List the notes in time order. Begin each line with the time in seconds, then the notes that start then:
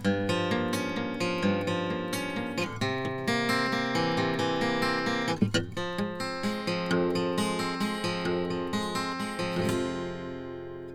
0.06 G2
0.30 F3
0.52 A#3
0.74 C#4
0.98 A#3
1.22 F3
1.44 G2
1.69 F3
1.92 A#3
2.14 C#4
2.38 A#3
2.83 C3
3.20 E3
3.29 A#3
3.50 C4
3.74 A#3
3.96 E3
4.19 C3
4.40 E3
4.62 A#3
4.83 C4
5.08 A#3
5.55 F2 C3
5.78 F3
6.00 G#3
6.21 C4
6.45 G#3
6.69 F3
6.92 F2
7.17 F3
7.39 G#3
7.61 C4
7.82 G#3
8.05 F3
8.27 F2
8.52 F3
8.74 G#3
8.96 C4
9.21 G#3
9.40 F3
9.58 F2 C3
9.64 F3 G#3
9.70 F4